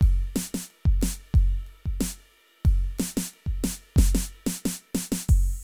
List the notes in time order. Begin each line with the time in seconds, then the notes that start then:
0.01 kick, ride
0.36 snare, ride
0.54 snare
0.70 ride
0.85 kick
1.01 snare, ride
1.34 kick, ride
1.66 ride
1.86 kick
2.00 snare, ride
2.65 kick, ride
2.99 snare, ride
3.17 snare
3.33 ride
3.46 kick
3.64 snare, ride
3.96 kick, snare, ride
4.15 snare
4.46 snare
4.65 snare
4.95 snare
5.12 snare
5.29 kick, crash